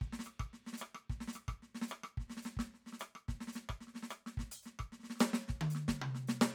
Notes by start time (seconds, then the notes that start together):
0.01 kick, snare
0.07 kick
0.12 snare
0.19 snare
0.24 cross-stick, hi-hat pedal
0.39 kick, cross-stick
0.45 kick
0.53 snare
0.63 snare
0.66 snare
0.73 snare
0.77 cross-stick, hi-hat pedal
0.95 cross-stick
1.10 kick, snare
1.17 kick, snare
1.28 snare
1.33 cross-stick, hi-hat pedal
1.48 kick, cross-stick
1.62 snare
1.68 snare
1.72 snare
1.75 snare
1.81 snare
1.88 cross-stick, hi-hat pedal
2.04 cross-stick
2.17 kick, snare
2.28 snare
2.30 snare
2.37 snare
2.42 snare, hi-hat pedal
2.57 kick, snare
2.74 snare
2.80 snare
2.83 snare
2.86 snare
2.92 snare
2.99 cross-stick, hi-hat pedal
3.15 cross-stick
3.28 kick, snare
3.35 kick
3.40 snare
3.47 snare
3.53 snare, hi-hat pedal
3.69 kick, cross-stick
3.81 snare
3.87 snare
3.94 snare
4.03 snare
4.10 cross-stick, hi-hat pedal
4.26 snare
4.37 kick, snare
4.43 kick
4.51 open hi-hat
4.62 snare, hi-hat pedal
4.79 kick, cross-stick
4.92 snare
4.99 snare
5.03 snare
5.10 snare
5.16 snare, hi-hat pedal
5.20 snare
5.33 snare
5.48 kick, snare
5.56 kick
5.61 high tom
5.70 hi-hat pedal
5.75 snare
5.88 kick, snare
6.02 mid tom
6.15 snare
6.27 snare, hi-hat pedal
6.41 snare